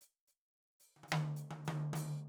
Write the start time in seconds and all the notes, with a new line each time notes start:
0.01 hi-hat pedal
0.27 hi-hat pedal
0.80 hi-hat pedal
0.96 high tom
1.03 high tom
1.07 hi-hat pedal, high tom
1.12 high tom
1.36 hi-hat pedal
1.51 high tom
1.65 hi-hat pedal, high tom
1.93 hi-hat pedal, high tom